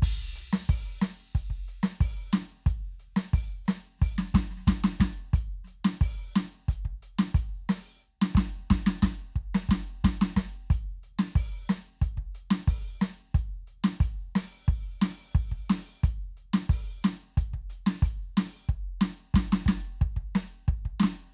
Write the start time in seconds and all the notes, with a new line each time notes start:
0.01 kick, hi-hat pedal, crash
0.03 kick
0.33 closed hi-hat, hi-hat pedal
0.54 snare
0.70 open hi-hat, kick
1.02 closed hi-hat, snare, hi-hat pedal
1.36 closed hi-hat, kick
1.51 kick
1.69 closed hi-hat
1.84 snare
2.01 open hi-hat, kick
2.33 snare, hi-hat pedal
2.67 closed hi-hat, kick
3.00 closed hi-hat
3.17 snare
3.34 open hi-hat, kick
3.66 closed hi-hat, snare, hi-hat pedal
4.00 open hi-hat, kick, snare
4.19 snare
4.35 kick, snare, hi-hat pedal
4.51 snare
4.58 snare
4.61 snare
4.67 kick, snare, hi-hat pedal
4.85 snare
4.99 kick, snare, hi-hat pedal
5.34 closed hi-hat, kick
5.65 closed hi-hat, snare
5.85 snare
6.02 open hi-hat, kick
6.35 closed hi-hat, snare, hi-hat pedal
6.69 closed hi-hat, kick
6.86 kick
7.03 closed hi-hat
7.19 snare
7.35 closed hi-hat, kick
7.70 open hi-hat, snare
8.01 hi-hat pedal
8.22 snare
8.36 kick, snare
8.57 cross-stick, snare
8.71 kick, snare
8.87 snare
9.03 kick, snare
9.37 kick, snare
9.55 snare
9.70 kick, snare
10.05 kick, snare
10.22 snare
10.37 kick, snare
10.71 closed hi-hat, kick
11.04 closed hi-hat
11.20 snare
11.36 open hi-hat, kick
11.70 open hi-hat, snare, hi-hat pedal
12.02 closed hi-hat, kick
12.18 kick
12.22 crash, ride
12.36 closed hi-hat
12.51 snare
12.68 open hi-hat, kick
13.01 closed hi-hat, snare, hi-hat pedal
13.35 closed hi-hat, kick
13.68 closed hi-hat
13.85 snare
14.01 closed hi-hat, kick
14.36 open hi-hat, snare
14.69 kick
15.02 open hi-hat, snare
15.36 open hi-hat, kick
15.52 kick, cross-stick
15.57 crash, ride
15.70 open hi-hat, snare
16.01 closed hi-hat, kick, hi-hat pedal
16.38 closed hi-hat
16.54 snare
16.70 open hi-hat, kick
17.03 closed hi-hat, snare, hi-hat pedal
17.38 closed hi-hat, kick
17.54 kick
17.71 closed hi-hat
17.87 snare
18.03 open hi-hat, kick
18.38 open hi-hat, snare
18.70 kick, hi-hat pedal
19.02 snare
19.35 kick, snare
19.53 snare
19.67 kick, snare
20.02 kick
20.17 kick, snare
20.21 crash, high tom, ride
20.36 snare
20.69 kick
20.86 kick
20.90 snare, crash, ride
21.01 snare
21.04 snare